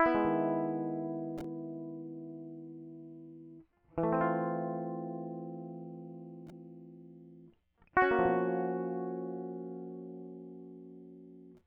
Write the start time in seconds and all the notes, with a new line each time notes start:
0.00 E4
0.07 B3
0.16 G#3
0.26 D#3
3.99 E3
4.04 A3
4.13 C4
4.21 F4
7.97 F#4
8.03 C#4
8.12 A#3
8.20 F3
8.27 B2